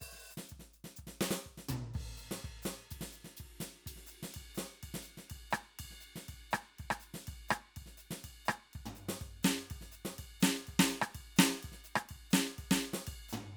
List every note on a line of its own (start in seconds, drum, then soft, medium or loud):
0.01 open hi-hat medium
0.01 kick soft
0.13 snare soft
0.27 open hi-hat soft
0.31 hi-hat pedal medium
0.38 snare medium
0.49 kick soft
0.49 closed hi-hat medium
0.57 kick soft
0.57 snare soft
0.74 hi-hat pedal soft
0.74 open hi-hat soft
0.85 snare soft
0.97 kick soft
0.97 closed hi-hat medium
1.08 snare soft
1.22 snare loud
1.22 hi-hat pedal medium
1.31 snare loud
1.46 kick soft
1.46 snare soft
1.58 snare soft
1.69 kick soft
1.69 hi-hat pedal soft
1.69 mid tom loud
1.76 kick soft
1.95 kick soft
1.95 crash medium
2.01 snare soft
2.18 hi-hat pedal medium
2.22 ride soft
2.32 snare medium
2.45 kick soft
2.45 ride soft
2.63 snare medium
2.63 hi-hat pedal medium
2.91 kick soft
2.91 ride medium
3.02 snare medium
3.13 hi-hat pedal medium
3.25 snare soft
3.38 kick soft
3.38 ride medium
3.61 snare medium
3.61 hi-hat pedal medium
3.87 kick soft
3.87 ride medium
3.97 snare soft
4.07 hi-hat pedal medium
4.11 ride soft
4.23 snare medium
4.35 kick soft
4.35 ride bell medium
4.55 snare medium
4.55 hi-hat pedal medium
4.84 kick soft
4.84 ride bell medium
4.95 snare medium
5.03 hi-hat pedal medium
5.03 ride soft
5.18 snare soft
5.31 kick soft
5.31 ride bell medium
5.51 cross-stick medium
5.51 hi-hat pedal medium
5.80 kick soft
5.80 ride bell loud
5.85 kick soft
5.92 snare soft
6.01 hi-hat pedal medium
6.01 ride soft
6.16 snare medium
6.29 kick soft
6.29 ride bell medium
6.34 kick soft
6.52 cross-stick medium
6.52 hi-hat pedal medium
6.79 kick soft
6.79 ride bell soft
6.91 cross-stick medium
7.01 hi-hat pedal medium
7.01 ride soft
7.15 snare medium
7.28 kick soft
7.28 ride bell medium
7.49 cross-stick medium
7.49 hi-hat pedal medium
7.77 kick soft
7.77 ride bell medium
7.83 kick soft
7.87 snare soft
7.98 hi-hat pedal medium
7.98 ride soft
8.11 snare medium
8.25 kick soft
8.25 ride bell medium
8.46 cross-stick medium
8.46 hi-hat pedal medium
8.74 kick soft
8.74 ride bell soft
8.86 floor tom loud
8.96 hi-hat pedal medium
8.96 ride bell soft
9.09 snare medium
9.22 kick soft
9.22 ride bell medium
9.44 snare loud
9.44 hi-hat pedal medium
9.71 kick soft
9.71 ride bell medium
9.82 snare soft
9.92 hi-hat pedal medium
9.92 ride soft
10.06 snare medium
10.19 kick soft
10.19 ride bell medium
10.41 snare loud
10.41 hi-hat pedal medium
10.68 kick soft
10.68 ride bell medium
10.74 kick soft
10.80 snare loud
10.89 hi-hat pedal medium
10.89 ride soft
11.02 cross-stick medium
11.15 kick soft
11.15 ride bell medium
11.37 snare loud
11.37 hi-hat pedal medium
11.64 kick soft
11.64 ride bell medium
11.73 snare soft
11.85 hi-hat pedal medium
11.85 ride soft
11.96 cross-stick medium
12.10 kick soft
12.10 ride bell medium
12.16 kick soft
12.31 snare loud
12.31 hi-hat pedal medium
12.59 kick soft
12.59 ride bell medium
12.72 snare loud
12.79 hi-hat pedal medium
12.79 ride soft
12.94 snare medium
13.08 kick soft
13.08 ride bell medium
13.29 hi-hat pedal medium
13.33 floor tom loud